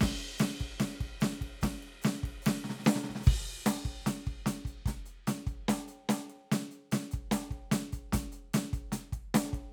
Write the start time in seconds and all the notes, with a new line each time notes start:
0.01 kick, snare, hi-hat pedal, ride
0.20 ride
0.39 snare, hi-hat pedal, ride
0.61 kick, ride
0.81 snare, hi-hat pedal, ride
1.01 kick, ride
1.21 snare, hi-hat pedal, ride
1.42 kick, ride
1.62 kick, snare, hi-hat pedal, ride
1.83 ride
2.03 snare, hi-hat pedal, ride
2.24 kick, ride
2.43 hi-hat pedal
2.47 snare, ride
2.65 snare
2.70 snare
2.80 snare
2.84 snare, hi-hat pedal
2.87 snare
2.96 snare
3.04 snare
3.10 kick, snare
3.16 snare
3.21 snare, hi-hat pedal
3.27 kick, snare, crash
3.67 closed hi-hat, snare
3.86 kick, closed hi-hat
4.07 closed hi-hat, snare
4.27 closed hi-hat, kick
4.47 closed hi-hat, snare
4.66 closed hi-hat, kick
4.87 open hi-hat, kick, snare, hi-hat pedal
4.96 kick
5.07 closed hi-hat
5.28 closed hi-hat, snare
5.48 closed hi-hat, kick
5.69 closed hi-hat, snare
5.89 closed hi-hat
6.10 closed hi-hat, snare
6.31 closed hi-hat
6.52 closed hi-hat, snare
6.72 closed hi-hat
6.92 closed hi-hat, snare
7.12 closed hi-hat, kick
7.32 closed hi-hat, snare
7.52 kick, closed hi-hat
7.72 closed hi-hat, snare
7.93 closed hi-hat, kick
8.13 closed hi-hat, kick, snare
8.33 closed hi-hat
8.54 closed hi-hat, snare
8.74 closed hi-hat, kick
8.93 closed hi-hat, snare
9.13 kick, closed hi-hat
9.35 closed hi-hat, snare
9.54 kick, closed hi-hat